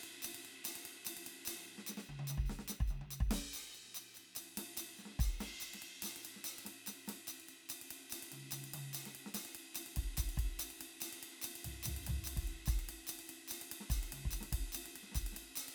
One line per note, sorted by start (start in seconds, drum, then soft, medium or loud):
0.01 hi-hat pedal soft
0.01 ride medium
0.23 hi-hat pedal medium
0.23 ride medium
0.35 ride medium
0.42 hi-hat pedal soft
0.42 ride medium
0.65 hi-hat pedal loud
0.65 ride loud
0.76 ride medium
0.86 ride medium
0.94 snare soft
1.06 hi-hat pedal medium
1.06 ride loud
1.17 ride medium
1.25 hi-hat pedal soft
1.25 ride medium
1.46 hi-hat pedal medium
1.46 ride loud
1.59 snare soft
1.64 hi-hat pedal soft
1.70 snare soft
1.78 snare soft
1.87 snare soft
1.87 hi-hat pedal loud
1.98 snare medium
2.05 kick soft
2.05 hi-hat pedal soft
2.10 high tom medium
2.20 high tom medium
2.28 hi-hat pedal medium
2.28 high tom medium
2.38 kick soft
2.47 snare medium
2.47 hi-hat pedal soft
2.59 snare medium
2.68 snare medium
2.68 hi-hat pedal loud
2.81 kick soft
2.88 hi-hat pedal soft
2.88 high tom soft
3.02 high tom medium
3.11 hi-hat pedal medium
3.21 kick soft
3.31 snare medium
3.31 hi-hat pedal soft
3.31 crash medium
3.53 hi-hat pedal medium
3.53 ride soft
3.65 ride soft
3.74 hi-hat pedal soft
3.74 ride soft
3.88 snare soft
3.95 hi-hat pedal loud
3.95 ride medium
4.15 hi-hat pedal soft
4.15 ride soft
4.26 snare soft
4.36 hi-hat pedal medium
4.36 ride medium
4.55 snare medium
4.55 hi-hat pedal soft
4.55 ride loud
4.78 hi-hat pedal loud
4.78 ride medium
4.98 snare soft
4.98 hi-hat pedal soft
5.06 snare soft
5.10 snare soft
5.20 kick medium
5.20 hi-hat pedal medium
5.40 snare medium
5.40 hi-hat pedal soft
5.40 ride medium
5.61 hi-hat pedal medium
5.61 ride medium
5.74 snare soft
5.74 ride medium
5.81 hi-hat pedal soft
5.81 ride medium
6.03 snare soft
6.03 hi-hat pedal loud
6.03 ride medium
6.17 ride medium
6.24 hi-hat pedal soft
6.24 ride medium
6.36 snare soft
6.45 hi-hat pedal loud
6.45 ride medium
6.59 ride medium
6.65 snare soft
6.65 hi-hat pedal soft
6.65 ride medium
6.87 snare soft
6.87 hi-hat pedal medium
6.87 ride medium
7.07 snare medium
7.07 hi-hat pedal soft
7.07 ride medium
7.28 hi-hat pedal loud
7.28 ride medium
7.40 ride soft
7.47 hi-hat pedal soft
7.47 ride medium
7.70 hi-hat pedal medium
7.70 ride medium
7.82 ride medium
7.89 hi-hat pedal soft
7.89 ride medium
8.10 hi-hat pedal medium
8.10 ride medium
8.23 ride medium
8.28 hi-hat pedal soft
8.28 ride medium
8.34 high tom soft
8.51 hi-hat pedal loud
8.51 high tom soft
8.51 ride medium
8.65 ride medium
8.71 hi-hat pedal soft
8.71 high tom medium
8.71 ride medium
8.94 hi-hat pedal medium
8.94 ride medium
9.06 snare soft
9.06 ride medium
9.12 hi-hat pedal soft
9.12 ride medium
9.27 snare medium
9.35 snare medium
9.35 hi-hat pedal medium
9.35 ride medium
9.46 ride medium
9.53 hi-hat pedal soft
9.53 ride medium
9.75 hi-hat pedal medium
9.75 ride medium
9.87 ride medium
9.97 kick soft
9.97 ride medium
10.18 kick soft
10.18 hi-hat pedal loud
10.18 ride medium
10.30 ride medium
10.37 kick soft
10.37 hi-hat pedal soft
10.37 ride medium
10.60 hi-hat pedal loud
10.60 ride medium
10.71 ride medium
10.79 hi-hat pedal soft
10.79 ride medium
11.01 hi-hat pedal medium
11.01 ride loud
11.13 ride medium
11.23 ride medium
11.42 hi-hat pedal loud
11.42 ride medium
11.56 ride medium
11.61 hi-hat pedal soft
11.61 ride medium
11.65 floor tom soft
11.84 floor tom medium
11.84 hi-hat pedal loud
11.84 ride medium
11.97 ride medium
12.03 hi-hat pedal soft
12.03 ride medium
12.08 floor tom medium
12.25 hi-hat pedal medium
12.25 ride medium
12.37 kick soft
12.37 ride medium
12.44 hi-hat pedal soft
12.48 ride medium
12.66 kick medium
12.66 hi-hat pedal medium
12.66 ride medium
12.80 ride medium
12.89 ride medium
13.07 hi-hat pedal loud
13.07 ride medium
13.20 ride medium
13.27 hi-hat pedal soft
13.27 ride medium
13.48 hi-hat pedal medium
13.48 ride medium
13.62 ride medium
13.67 hi-hat pedal soft
13.72 ride medium
13.81 snare soft
13.90 kick soft
13.90 hi-hat pedal medium
13.90 ride medium
14.04 ride medium
14.09 hi-hat pedal soft
14.09 high tom soft
14.09 ride medium
14.26 kick soft
14.31 hi-hat pedal medium
14.31 ride medium
14.41 snare soft
14.41 ride medium
14.51 kick soft
14.51 hi-hat pedal soft
14.51 ride medium
14.73 hi-hat pedal medium
14.73 ride medium
14.86 ride medium
14.96 ride medium
15.03 snare soft
15.12 kick soft
15.12 snare soft
15.12 hi-hat pedal medium
15.16 ride medium
15.27 ride medium
15.33 snare soft
15.33 hi-hat pedal soft
15.33 ride medium
15.42 snare soft
15.56 hi-hat pedal loud
15.56 ride medium
15.69 ride medium